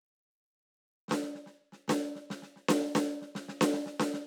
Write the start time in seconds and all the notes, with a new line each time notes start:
1.08 snare
1.11 snare
1.23 snare
1.35 snare
1.46 snare
1.61 snare
1.72 snare
1.88 snare
2.03 snare
2.15 snare
2.30 snare
2.42 snare
2.56 snare
2.69 snare
2.81 snare
2.95 snare
3.06 snare
3.22 snare
3.35 snare
3.48 snare
3.61 snare
3.73 snare
3.86 snare
4.00 snare
4.13 snare